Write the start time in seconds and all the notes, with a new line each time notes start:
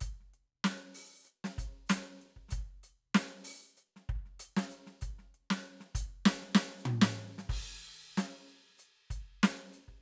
0.01 closed hi-hat, kick
0.07 kick
0.20 snare
0.25 snare
0.34 closed hi-hat
0.64 closed hi-hat, snare
0.95 open hi-hat
1.24 closed hi-hat, hi-hat pedal
1.44 snare
1.56 closed hi-hat, kick, snare
1.66 kick
1.87 closed hi-hat, snare, hi-hat pedal
2.22 closed hi-hat
2.36 kick
2.49 closed hi-hat, kick, snare
2.54 snare
2.58 kick
2.61 kick
2.84 closed hi-hat
3.15 closed hi-hat, snare
3.45 open hi-hat
3.77 closed hi-hat, hi-hat pedal
3.96 snare
4.09 kick, closed hi-hat
4.15 kick
4.19 kick
4.26 snare
4.40 closed hi-hat
4.57 snare
4.71 closed hi-hat
4.87 snare
5.02 closed hi-hat, kick
5.10 kick
5.19 snare
5.35 closed hi-hat
5.51 snare
5.81 snare
5.95 closed hi-hat, kick
6.01 kick
6.05 kick
6.26 snare
6.42 snare
6.55 snare
6.71 snare
6.79 hi-hat pedal
6.86 mid tom
7.02 snare
7.38 snare
7.49 kick, snare, crash
7.56 kick
7.59 kick
7.82 snare
7.88 closed hi-hat
8.18 closed hi-hat, snare
8.48 closed hi-hat
8.70 snare
8.78 closed hi-hat, hi-hat pedal
9.11 closed hi-hat, kick
9.16 kick
9.43 open hi-hat, snare, hi-hat pedal
9.73 closed hi-hat
9.88 kick